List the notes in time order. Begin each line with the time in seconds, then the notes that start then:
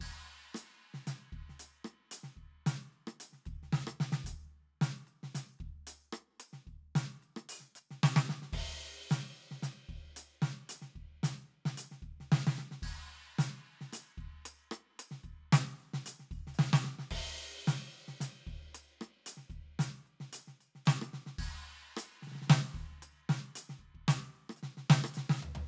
0.01 kick, crash
0.28 percussion
0.55 cross-stick, percussion
0.81 percussion
0.95 snare
1.08 snare, percussion
1.33 kick, percussion
1.50 snare
1.60 percussion
1.85 cross-stick
2.12 percussion
2.24 snare
2.37 kick, percussion
2.67 snare, percussion
2.93 percussion
3.08 cross-stick
3.21 percussion
3.33 snare
3.46 kick, percussion
3.64 snare
3.73 snare
3.87 cross-stick
4.01 snare
4.13 snare
4.25 kick, percussion
4.50 percussion
4.82 snare, percussion
5.07 percussion
5.24 snare
5.35 snare, percussion
5.60 kick, percussion
5.87 percussion
6.13 cross-stick
6.40 percussion
6.53 snare
6.67 kick, percussion
6.96 snare, percussion
7.23 percussion
7.37 cross-stick
7.50 percussion
7.61 snare
7.76 percussion
7.91 snare
8.04 snare
8.17 snare
8.30 snare
8.43 snare
8.53 kick, ride
9.10 snare, percussion
9.12 percussion
9.38 percussion
9.52 snare
9.63 snare, percussion
9.89 kick, percussion
10.17 percussion
10.43 snare
10.70 percussion
10.82 snare
10.96 kick, percussion
11.24 snare, percussion
11.51 percussion
11.66 snare
11.78 percussion
11.92 snare
12.03 kick, percussion
12.21 snare
12.32 snare
12.47 snare
12.59 snare
12.72 snare
12.83 kick, crash
13.10 percussion
13.39 snare, percussion
13.67 percussion
13.81 snare
13.93 cross-stick, percussion
14.18 kick, percussion
14.46 percussion
14.72 cross-stick
15.00 percussion
15.12 snare
15.24 kick, percussion
15.53 snare, percussion
15.80 percussion
15.94 snare
16.07 percussion
16.20 snare
16.32 kick, percussion
16.48 snare
16.55 percussion
16.59 snare
16.74 snare
16.85 snare
16.99 snare
17.11 kick, ride
17.68 snare, percussion
17.93 percussion
18.09 snare
18.21 snare, percussion
18.47 kick, percussion
18.75 percussion
19.02 cross-stick
19.27 percussion
19.38 snare
19.50 kick, percussion
19.80 snare, percussion
20.07 percussion
20.21 snare
20.33 percussion
20.48 snare
20.61 percussion
20.76 snare
20.86 snare, percussion
21.02 cross-stick
21.14 snare
21.27 snare
21.39 kick, crash
21.68 percussion
21.97 cross-stick, percussion
22.23 snare
22.28 snare
22.32 snare
22.36 snare
22.48 snare
22.50 snare
22.75 kick
23.03 percussion
23.30 snare
23.56 percussion
23.70 snare
23.80 kick
23.95 kick
24.09 snare, percussion
24.36 percussion
24.50 cross-stick
24.57 percussion
24.63 snare
24.78 snare
24.90 snare
25.04 cross-stick
25.15 snare, percussion
25.30 snare
25.43 floor tom
25.56 floor tom